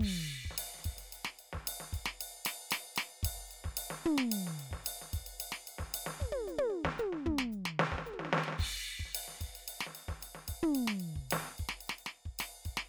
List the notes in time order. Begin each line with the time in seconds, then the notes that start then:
0.01 kick, hi-hat pedal, crash
0.15 kick
0.45 kick
0.51 snare
0.58 hi-hat pedal, ride bell
0.74 snare
0.79 snare
0.84 kick, ride
0.91 kick
0.97 snare, ride
1.12 hi-hat pedal, ride bell
1.25 snare
1.39 ride
1.53 kick, snare
1.67 hi-hat pedal, ride bell
1.80 snare
1.93 kick, ride
2.06 snare
2.20 hi-hat pedal, ride bell
2.45 snare, ride
2.71 snare, hi-hat pedal, ride
2.96 snare, hi-hat pedal, ride
3.23 kick, snare, hi-hat pedal, ride bell
3.35 kick
3.47 hi-hat pedal, ride
3.64 kick, snare
3.77 hi-hat pedal, ride bell
3.90 snare
4.05 floor tom
4.18 snare
4.31 hi-hat pedal, ride bell
4.47 snare
4.59 ride
4.71 kick, snare
4.80 snare
4.84 hi-hat pedal, ride bell
5.02 snare
5.13 kick, ride
5.20 kick
5.26 ride bell
5.39 hi-hat pedal, ride bell
5.52 snare
5.67 ride
5.78 kick, snare
5.85 kick
5.93 hi-hat pedal, ride bell
6.06 snare
6.20 kick, high tom
6.28 kick
6.32 high tom
6.47 hi-hat pedal, high tom
6.58 high tom
6.69 high tom
6.84 kick, snare
6.98 hi-hat pedal, mid tom
7.13 snare
7.25 kick, floor tom
7.39 snare
7.52 hi-hat pedal
7.65 snare
7.79 snare
7.92 kick, snare
7.98 snare
8.06 hi-hat pedal, mid tom
8.13 mid tom
8.19 snare
8.25 snare
8.33 snare
8.38 snare
8.44 snare
8.48 snare
8.53 snare
8.58 kick, hi-hat pedal, crash
8.73 kick
8.99 kick
9.05 snare
9.13 hi-hat pedal, ride bell
9.28 snare
9.35 snare
9.41 kick, ride
9.46 kick
9.55 ride
9.68 hi-hat pedal, ride bell
9.81 snare
9.87 snare
9.95 ride
10.08 kick, snare
10.21 hi-hat pedal, ride bell
10.35 snare
10.48 kick, ride
10.62 floor tom
10.75 hi-hat pedal, ride
10.87 snare
11.00 ride
11.16 kick
11.30 snare, hi-hat pedal, ride bell
11.58 kick, ride
11.69 snare
11.81 ride bell
11.87 snare, hi-hat pedal
11.98 ride
12.06 snare
12.25 kick
12.38 snare, hi-hat pedal, ride
12.65 kick, ride
12.77 snare